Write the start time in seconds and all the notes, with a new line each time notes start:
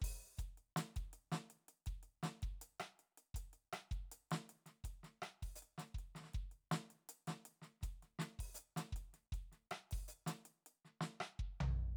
0.02 kick, open hi-hat
0.37 kick, closed hi-hat, hi-hat pedal
0.58 closed hi-hat
0.76 snare, closed hi-hat
0.96 kick, closed hi-hat
1.13 closed hi-hat
1.32 snare, closed hi-hat
1.50 closed hi-hat
1.68 closed hi-hat
1.86 kick, closed hi-hat
2.03 closed hi-hat
2.23 snare, closed hi-hat
2.42 kick, closed hi-hat
2.62 closed hi-hat
2.80 cross-stick, closed hi-hat
2.99 closed hi-hat
3.18 closed hi-hat
3.34 kick, closed hi-hat
3.53 closed hi-hat
3.73 cross-stick, closed hi-hat
3.91 kick, closed hi-hat
4.12 closed hi-hat
4.31 snare, closed hi-hat
4.49 closed hi-hat
4.66 snare, closed hi-hat
4.84 kick, closed hi-hat
5.03 snare, closed hi-hat
5.22 cross-stick, closed hi-hat
5.43 kick, open hi-hat
5.56 hi-hat pedal
5.62 closed hi-hat
5.78 snare, closed hi-hat
5.95 kick
5.99 closed hi-hat
6.15 snare, closed hi-hat
6.19 snare
6.22 snare
6.24 snare
6.29 snare
6.34 kick, closed hi-hat
6.51 closed hi-hat
6.71 snare, closed hi-hat
6.90 closed hi-hat
7.09 closed hi-hat
7.27 snare, closed hi-hat
7.45 closed hi-hat
7.62 snare, closed hi-hat
7.81 kick, snare, closed hi-hat
8.03 snare, closed hi-hat
8.19 snare, closed hi-hat
8.39 kick, open hi-hat
8.55 hi-hat pedal
8.59 closed hi-hat
8.76 snare, closed hi-hat
8.93 kick, closed hi-hat
9.13 snare, closed hi-hat
9.32 kick, closed hi-hat
9.52 snare, closed hi-hat
9.71 cross-stick, closed hi-hat
9.91 kick, open hi-hat
10.08 closed hi-hat, hi-hat pedal
10.27 snare, closed hi-hat
10.45 closed hi-hat
10.66 closed hi-hat
10.85 snare
11.01 snare
11.20 cross-stick
11.39 kick
11.60 floor tom